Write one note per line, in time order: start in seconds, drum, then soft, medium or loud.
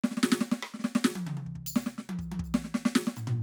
0.04 snare loud
0.11 snare medium
0.17 snare medium
0.23 snare loud
0.32 snare loud
0.41 snare loud
0.52 snare loud
0.63 high tom loud
0.74 snare medium
0.80 snare medium
0.84 snare loud
0.96 snare loud
1.05 snare loud
1.16 high tom loud
1.27 mid tom loud
1.37 high tom medium
1.47 kick soft
1.56 kick soft
1.67 percussion loud
1.76 snare loud
1.86 snare medium
1.98 snare medium
2.04 percussion soft
2.09 high tom loud
2.19 kick medium
2.19 percussion soft
2.32 high tom loud
2.40 kick medium
2.44 percussion soft
2.54 snare loud
2.75 snare loud
2.86 snare loud
2.96 snare loud
3.07 snare loud
3.17 floor tom loud
3.17 percussion medium
3.28 floor tom loud